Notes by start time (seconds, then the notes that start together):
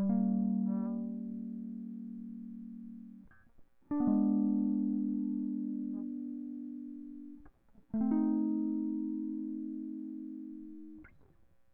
0.00 G3
0.10 A#3
3.91 D4
4.01 B3
4.08 G#3
7.94 A3
8.01 C4
8.11 D#4